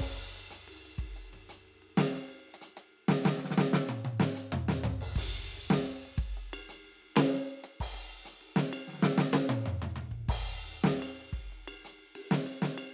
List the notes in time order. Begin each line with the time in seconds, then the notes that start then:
0.01 kick, crash
0.17 closed hi-hat
0.33 ride
0.51 closed hi-hat
0.68 ride
0.85 closed hi-hat
0.99 kick, ride
1.16 closed hi-hat
1.33 cross-stick, ride, floor tom
1.49 closed hi-hat
1.65 ride
1.82 ride
1.98 snare, ride bell
2.14 snare
2.29 ride
2.39 closed hi-hat
2.49 closed hi-hat
2.54 closed hi-hat
2.62 closed hi-hat
2.77 closed hi-hat
3.09 snare
3.22 snare, hi-hat pedal
3.37 snare
3.45 snare
3.51 snare
3.58 snare
3.74 snare
3.89 high tom
4.05 high tom
4.20 snare
4.36 closed hi-hat
4.52 mid tom
4.69 snare
4.84 floor tom
5.01 kick, crash
5.16 kick, ride
5.22 hi-hat pedal
5.36 closed hi-hat
5.53 ride
5.70 snare
5.87 ride bell
6.06 closed hi-hat
6.18 kick, ride
6.37 closed hi-hat
6.53 ride bell
6.69 closed hi-hat
6.85 ride
7.02 ride
7.16 snare, ride bell
7.34 snare
7.48 ride
7.64 closed hi-hat
7.80 kick, crash
7.94 closed hi-hat
8.10 ride bell
8.26 closed hi-hat
8.41 ride
8.56 snare
8.73 ride bell
8.88 snare
8.94 snare
8.99 snare
9.03 snare
9.18 snare
9.33 snare
9.49 high tom
9.66 mid tom
9.82 mid tom
9.96 mid tom
10.11 kick, closed hi-hat
10.29 kick, crash
10.48 closed hi-hat
10.64 ride
10.84 snare
11.02 ride bell
11.21 closed hi-hat
11.33 kick, ride
11.52 closed hi-hat
11.68 ride bell
11.85 closed hi-hat
11.99 ride
12.16 ride
12.31 snare
12.47 ride bell
12.62 snare
12.78 ride bell